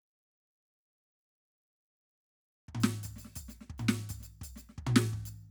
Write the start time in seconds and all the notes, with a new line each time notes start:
2.68 kick
2.75 floor tom
2.80 snare, percussion
3.03 kick, percussion
3.16 snare, percussion
3.25 snare
3.36 kick, percussion
3.48 snare, percussion
3.61 snare
3.70 kick
3.78 floor tom, percussion
3.88 snare
4.09 kick, percussion
4.20 snare, percussion
4.41 kick, percussion
4.56 snare, percussion
4.69 snare
4.78 kick
4.87 floor tom
4.96 snare
5.13 kick
5.25 percussion